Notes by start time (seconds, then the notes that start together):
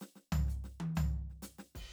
0.00 snare, hi-hat pedal
0.15 snare
0.32 floor tom
0.47 snare, hi-hat pedal
0.64 snare
0.80 closed hi-hat, high tom
0.95 floor tom, hi-hat pedal
1.30 snare
1.42 snare, hi-hat pedal
1.58 snare
1.75 kick, ride